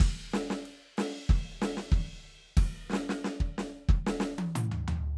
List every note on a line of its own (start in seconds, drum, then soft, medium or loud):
0.00 kick loud
0.00 ride medium
0.00 crash loud
0.32 snare loud
0.32 ride soft
0.50 snare loud
0.65 ride medium
0.97 snare loud
0.97 ride medium
1.29 kick loud
1.29 ride soft
1.62 snare loud
1.62 ride medium
1.77 snare medium
1.92 kick loud
1.92 ride medium
2.57 kick loud
2.57 ride loud
2.90 snare medium
2.93 snare loud
3.09 snare loud
3.24 snare loud
3.40 kick medium
3.58 snare loud
3.89 kick loud
4.07 snare loud
4.20 snare loud
4.38 high tom loud
4.55 mid tom loud
4.71 floor tom loud
4.88 floor tom loud